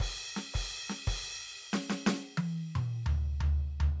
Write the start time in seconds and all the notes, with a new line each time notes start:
0.05 kick, crash
0.36 snare
0.53 kick, crash
0.89 snare
1.06 kick, crash
1.73 snare
1.90 snare
2.06 snare
2.13 snare
2.37 high tom
2.75 mid tom
3.06 floor tom
3.40 floor tom
3.80 floor tom